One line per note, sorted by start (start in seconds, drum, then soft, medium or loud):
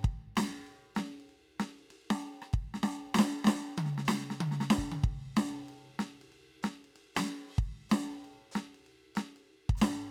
0.03 kick medium
0.03 mid tom soft
0.36 snare loud
0.36 hi-hat pedal soft
0.36 ride soft
0.55 ride soft
0.67 ride soft
0.95 snare medium
0.95 hi-hat pedal soft
0.95 ride soft
1.20 ride soft
1.29 ride soft
1.60 snare medium
1.60 hi-hat pedal soft
1.60 ride medium
1.79 ride soft
1.91 ride soft
2.11 snare loud
2.11 hi-hat pedal soft
2.22 ride soft
2.42 cross-stick medium
2.53 kick medium
2.53 ride soft
2.74 snare medium
2.83 snare loud
3.15 snare loud
3.19 snare loud
3.44 snare medium
3.44 hi-hat pedal medium
3.47 snare loud
3.77 hi-hat pedal medium
3.77 high tom loud
3.86 snare soft
3.98 snare medium
4.05 snare loud
4.05 hi-hat pedal medium
4.20 snare soft
4.30 snare medium
4.30 hi-hat pedal soft
4.41 high tom loud
4.51 snare medium
4.61 snare medium
4.61 hi-hat pedal soft
4.70 snare loud
4.78 kick soft
4.78 mid tom medium
4.92 high tom medium
5.02 kick medium
5.02 crash soft
5.37 snare loud
5.37 ride medium
5.69 ride soft
5.99 snare medium
5.99 hi-hat pedal medium
5.99 ride soft
6.22 ride soft
6.32 ride soft
6.63 snare medium
6.63 hi-hat pedal soft
6.63 ride soft
6.84 ride soft
6.96 ride soft
7.15 snare loud
7.15 hi-hat pedal soft
7.27 ride soft
7.48 crash soft
7.58 kick medium
7.58 hi-hat pedal soft
7.58 ride soft
7.89 snare loud
7.89 hi-hat pedal medium
8.13 ride soft
8.25 ride soft
8.52 snare medium
8.52 hi-hat pedal medium
8.52 ride soft
8.75 ride soft
8.87 ride soft
9.16 snare medium
9.16 hi-hat pedal medium
9.16 ride soft
9.36 ride soft
9.69 kick medium
9.76 hi-hat pedal loud
9.76 mid tom medium
9.82 snare loud